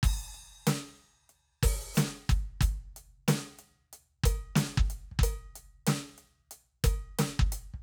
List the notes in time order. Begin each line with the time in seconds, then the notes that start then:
0.03 kick, crash
0.34 closed hi-hat
0.67 snare, closed hi-hat
0.98 closed hi-hat
1.29 closed hi-hat
1.63 kick, open hi-hat
1.94 snare, closed hi-hat, hi-hat pedal
2.29 kick, closed hi-hat
2.61 kick, closed hi-hat
2.96 closed hi-hat
3.28 snare, closed hi-hat
3.59 closed hi-hat
3.93 closed hi-hat
4.24 kick, closed hi-hat
4.56 snare, closed hi-hat
4.77 kick
4.90 closed hi-hat
5.11 kick
5.19 kick
5.23 closed hi-hat
5.56 closed hi-hat
5.87 snare, closed hi-hat
6.18 closed hi-hat
6.51 closed hi-hat
6.84 kick, closed hi-hat
7.19 snare, closed hi-hat
7.39 kick
7.52 closed hi-hat
7.74 kick